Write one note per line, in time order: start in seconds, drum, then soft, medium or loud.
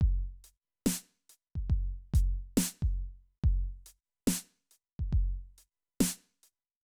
0.01 kick medium
0.01 ride soft
0.44 closed hi-hat medium
0.86 snare loud
1.29 closed hi-hat medium
1.56 kick soft
1.70 kick medium
2.14 kick medium
2.14 closed hi-hat medium
2.57 snare loud
2.82 kick medium
3.44 kick medium
3.44 snare soft
3.44 crash soft
3.86 closed hi-hat medium
4.27 snare loud
4.71 closed hi-hat soft
4.99 kick soft
5.13 kick medium
5.13 crash soft
5.58 closed hi-hat soft
6.01 snare loud
6.43 closed hi-hat soft